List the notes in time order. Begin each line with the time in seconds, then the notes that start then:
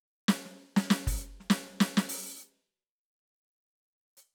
0.28 snare
0.45 snare
0.76 snare
0.90 snare
1.07 open hi-hat, kick
1.21 hi-hat pedal
1.40 snare
1.50 snare
1.70 snare
1.80 snare
1.97 snare
2.09 open hi-hat
2.40 hi-hat pedal
4.17 hi-hat pedal